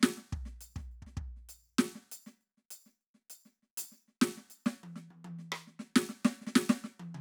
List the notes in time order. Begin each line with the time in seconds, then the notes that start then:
0.01 snare
0.03 snare
0.18 snare
0.33 kick
0.46 snare
0.61 percussion
0.76 kick, snare
0.92 percussion
1.02 kick
1.07 snare
1.17 kick
1.37 snare
1.49 percussion
1.79 snare
1.96 snare
2.12 percussion
2.27 snare
2.41 percussion
2.58 snare
2.71 percussion
2.86 snare
3.01 percussion
3.15 snare
3.30 percussion
3.46 snare
3.63 snare
3.78 percussion
3.92 snare
4.08 snare
4.22 snare
4.38 snare
4.50 percussion
4.66 snare
4.84 high tom
4.96 snare
5.11 high tom
5.25 high tom
5.39 snare
5.52 high tom
5.67 snare
5.80 snare
5.96 snare
6.09 snare
6.25 snare
6.42 snare
6.47 snare
6.56 snare
6.70 snare
6.84 snare
7.00 high tom
7.15 mid tom